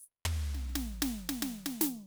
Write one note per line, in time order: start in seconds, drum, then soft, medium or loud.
0.00 hi-hat pedal medium
0.25 floor tom loud
0.54 snare soft
0.60 snare soft
0.65 snare soft
0.69 snare soft
0.75 snare medium
1.02 snare medium
1.29 snare medium
1.42 snare medium
1.66 snare medium
1.81 snare medium